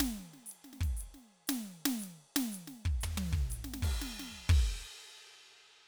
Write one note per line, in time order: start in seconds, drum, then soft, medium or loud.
0.01 snare medium
0.01 ride medium
0.20 snare soft
0.34 snare soft
0.47 hi-hat pedal medium
0.52 ride soft
0.65 snare soft
0.74 snare soft
0.81 kick medium
0.81 ride medium
0.97 hi-hat pedal medium
1.02 ride soft
1.15 snare soft
1.48 snare medium
1.48 hi-hat pedal medium
1.48 ride medium
1.86 snare medium
1.86 ride medium
2.00 hi-hat pedal medium
2.04 ride medium
2.37 snare medium
2.37 ride medium
2.52 hi-hat pedal medium
2.52 ride medium
2.68 snare soft
2.86 kick medium
3.02 floor tom medium
3.02 hi-hat pedal medium
3.18 high tom loud
3.34 kick medium
3.51 hi-hat pedal medium
3.51 ride medium
3.65 snare soft
3.74 snare soft
3.83 kick medium
3.83 crash medium
4.02 snare medium
4.20 snare soft
4.32 kick soft
4.50 kick medium
4.50 crash medium